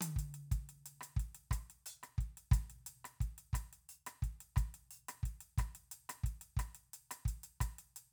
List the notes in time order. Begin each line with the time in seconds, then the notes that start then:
0.01 closed hi-hat, high tom
0.16 kick, closed hi-hat
0.34 closed hi-hat
0.52 kick, closed hi-hat
0.69 closed hi-hat
0.86 closed hi-hat
1.01 cross-stick, closed hi-hat
1.17 kick, closed hi-hat
1.35 closed hi-hat
1.51 kick, cross-stick, closed hi-hat
1.70 closed hi-hat
1.86 closed hi-hat
2.03 cross-stick, closed hi-hat
2.18 kick, closed hi-hat
2.37 closed hi-hat
2.51 kick, cross-stick, closed hi-hat
2.70 closed hi-hat
2.86 closed hi-hat
3.05 cross-stick, closed hi-hat
3.21 kick, closed hi-hat
3.38 closed hi-hat
3.53 kick, cross-stick, closed hi-hat
3.73 closed hi-hat
3.89 hi-hat pedal, open hi-hat
4.07 cross-stick, closed hi-hat
4.22 kick, closed hi-hat
4.41 closed hi-hat
4.56 kick, cross-stick, closed hi-hat
4.74 closed hi-hat
4.91 hi-hat pedal, open hi-hat
5.09 cross-stick, closed hi-hat
5.23 kick, closed hi-hat
5.41 closed hi-hat
5.58 kick, cross-stick, closed hi-hat
5.75 closed hi-hat
5.92 closed hi-hat
6.09 cross-stick, closed hi-hat
6.24 kick, closed hi-hat
6.41 closed hi-hat
6.57 kick, cross-stick, closed hi-hat
6.75 closed hi-hat
6.94 closed hi-hat
7.11 cross-stick, closed hi-hat
7.25 kick, closed hi-hat
7.44 closed hi-hat
7.61 kick, cross-stick, closed hi-hat
7.79 closed hi-hat
7.96 closed hi-hat